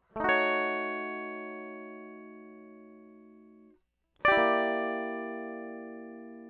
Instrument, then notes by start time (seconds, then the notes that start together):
electric guitar
0.17 A3 D#4
0.25 F#4
0.29 C#5
4.26 G4 D5
4.33 E4
4.38 A#3